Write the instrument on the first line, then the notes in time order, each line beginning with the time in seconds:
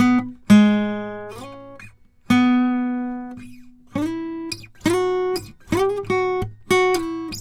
acoustic guitar
0.01 B3
0.51 G#3
1.33 C#4
2.31 B3
3.97 E4
4.87 F#4
5.74 G4
6.11 F#4
6.72 F#4
6.96 E4